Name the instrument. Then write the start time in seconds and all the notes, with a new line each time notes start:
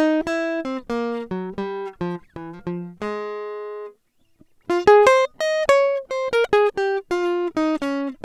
acoustic guitar
0.01 D#4
0.29 E4
0.67 C4
0.91 A#3
1.33 F#3
1.60 G3
2.03 F3
2.38 E3
2.69 F3
3.03 G#3
4.89 G#4
5.08 C5
5.42 D#5
5.71 C#5
6.13 C5
6.35 A#4
6.55 G#4
6.79 G4
7.13 F4
7.58 D#4
7.84 C#4